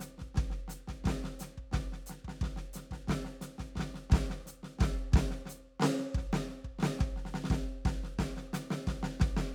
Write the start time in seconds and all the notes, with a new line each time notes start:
0.01 snare, hi-hat pedal
0.19 kick, snare
0.35 kick, snare
0.51 snare
0.69 snare, hi-hat pedal
0.88 kick, snare
1.05 kick, snare
1.08 snare
1.25 snare
1.40 snare, hi-hat pedal
1.58 kick
1.72 kick, snare
1.93 snare
2.07 snare, hi-hat pedal
2.25 kick, snare
2.42 kick, snare
2.57 snare
2.74 snare, hi-hat pedal
2.92 kick, snare
3.08 kick, snare
3.10 snare
3.26 snare
3.42 snare, hi-hat pedal
3.59 kick, snare
3.76 kick, snare
3.80 snare
3.95 snare
4.11 kick, snare
4.14 snare
4.31 snare
4.47 snare, hi-hat pedal
4.64 snare
4.80 kick, snare
4.82 snare
5.13 kick, snare
5.16 snare
5.31 snare
5.46 snare, hi-hat pedal
5.81 snare
5.83 snare
5.99 snare
6.15 kick, snare
6.34 snare
6.50 snare
6.65 kick
6.80 snare
6.84 snare
7.00 kick, snare
7.17 snare
7.26 snare
7.35 snare
7.45 snare
7.51 kick, snare
7.86 kick, snare
8.04 snare
8.19 kick, snare
8.37 snare
8.54 snare, hi-hat pedal
8.71 snare
8.88 kick, snare
9.04 snare
9.21 kick, snare
9.37 snare